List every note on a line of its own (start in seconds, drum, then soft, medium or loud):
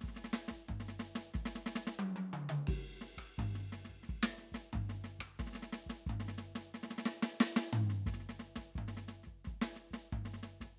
0.01 kick soft
0.01 snare soft
0.08 snare soft
0.14 snare soft
0.16 snare soft
0.33 snare medium
0.33 hi-hat pedal medium
0.48 kick soft
0.48 snare medium
0.69 kick soft
0.69 floor tom medium
0.80 snare soft
0.88 snare soft
0.99 snare medium
0.99 hi-hat pedal medium
1.15 snare medium
1.34 kick soft
1.34 snare soft
1.43 kick soft
1.43 snare medium
1.66 snare medium
1.76 snare medium
1.87 snare medium
1.99 high tom loud
2.16 high tom medium
2.33 mid tom medium
2.49 mid tom medium
2.67 kick medium
2.67 ride loud
3.01 snare soft
3.01 hi-hat pedal soft
3.18 kick soft
3.18 cross-stick medium
3.38 kick soft
3.38 floor tom loud
3.55 snare soft
3.72 snare soft
3.72 hi-hat pedal soft
3.85 snare soft
3.90 kick soft
4.03 snare soft
4.09 kick soft
4.23 snare loud
4.38 snare soft
4.38 hi-hat pedal soft
4.52 kick soft
4.52 snare medium
4.73 kick soft
4.73 floor tom medium
4.89 snare soft
5.04 snare soft
5.04 hi-hat pedal medium
5.19 kick soft
5.19 cross-stick medium
5.39 kick soft
5.39 snare medium
5.47 snare soft
5.53 snare soft
5.55 snare medium
5.62 snare soft
5.72 snare medium
5.72 hi-hat pedal soft
5.87 kick soft
5.87 snare medium
6.07 kick soft
6.07 floor tom medium
6.20 snare soft
6.28 snare soft
6.38 snare soft
6.38 hi-hat pedal soft
6.55 snare medium
6.74 snare soft
6.83 snare medium
6.91 snare medium
6.98 snare medium
7.06 snare medium
7.23 snare medium
7.40 snare loud
7.56 snare loud
7.73 floor tom loud
7.90 snare soft
8.06 kick soft
8.06 snare soft
8.14 snare soft
8.20 snare soft
8.29 snare soft
8.39 snare soft
8.56 kick soft
8.56 snare medium
8.76 kick soft
8.76 floor tom medium
8.88 snare soft
8.97 snare soft
9.08 snare soft
9.08 hi-hat pedal soft
9.23 kick soft
9.23 snare soft
9.45 kick soft
9.45 snare soft
9.62 snare medium
9.75 snare soft
9.75 hi-hat pedal medium
9.91 kick soft
9.91 snare medium
10.13 kick soft
10.13 floor tom medium
10.25 snare soft
10.34 snare soft
10.43 snare soft
10.43 hi-hat pedal soft
10.61 kick soft
10.61 snare soft